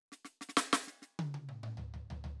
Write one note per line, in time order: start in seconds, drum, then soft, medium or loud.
0.12 snare soft
0.24 snare soft
0.41 snare medium
0.49 snare soft
0.57 snare loud
0.73 snare loud
0.82 hi-hat pedal medium
0.87 snare soft
1.02 snare soft
1.19 high tom medium
1.34 high tom medium
1.49 mid tom soft
1.63 mid tom medium
1.77 floor tom medium
1.94 floor tom soft
2.10 floor tom medium
2.24 floor tom medium